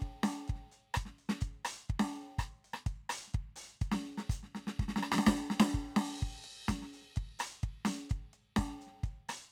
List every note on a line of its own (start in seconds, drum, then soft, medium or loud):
0.01 kick soft
0.01 closed hi-hat soft
0.23 open hi-hat medium
0.23 snare medium
0.48 kick soft
0.48 closed hi-hat soft
0.55 snare soft
0.60 snare soft
0.67 snare soft
0.71 open hi-hat soft
0.94 open hi-hat medium
0.94 kick soft
0.94 cross-stick medium
1.05 snare soft
1.18 open hi-hat soft
1.29 snare medium
1.41 closed hi-hat medium
1.41 kick soft
1.65 open hi-hat loud
1.65 cross-stick medium
1.89 kick soft
1.89 closed hi-hat soft
2.00 snare loud
2.13 open hi-hat soft
2.39 closed hi-hat medium
2.39 kick soft
2.39 cross-stick medium
2.64 open hi-hat soft
2.74 cross-stick medium
2.86 kick soft
2.86 closed hi-hat medium
3.09 open hi-hat loud
3.09 cross-stick medium
3.27 snare soft
3.34 kick soft
3.34 closed hi-hat soft
3.49 snare soft
3.56 open hi-hat medium
3.81 closed hi-hat medium
3.81 kick soft
3.92 snare medium
4.05 open hi-hat soft
4.18 snare soft
4.30 closed hi-hat loud
4.30 kick soft
4.43 snare soft
4.55 snare soft
4.67 snare soft
4.79 kick soft
4.79 snare soft
4.88 snare medium
4.96 snare medium
5.03 cross-stick medium
5.12 snare loud
5.18 snare loud
5.24 kick soft
5.24 snare loud
5.24 hi-hat pedal soft
5.50 snare medium
5.60 snare loud
5.74 kick soft
5.96 snare loud
5.96 crash loud
6.18 cross-stick soft
6.22 kick soft
6.44 open hi-hat soft
6.68 closed hi-hat medium
6.68 kick soft
6.68 snare medium
6.82 snare soft
6.93 open hi-hat soft
7.01 snare soft
7.06 snare soft
7.10 snare soft
7.16 kick soft
7.16 closed hi-hat soft
7.39 open hi-hat loud
7.39 cross-stick medium
7.63 kick soft
7.63 closed hi-hat soft
7.85 open hi-hat loud
7.85 snare medium
8.09 closed hi-hat medium
8.09 kick soft
8.18 snare soft
8.23 snare soft
8.33 open hi-hat soft
8.56 closed hi-hat medium
8.56 kick soft
8.56 snare medium
8.68 snare soft
8.81 open hi-hat soft
8.87 snare soft
8.92 snare soft
8.96 snare soft
8.99 snare soft
9.03 kick soft
9.03 closed hi-hat soft
9.29 open hi-hat medium
9.29 cross-stick medium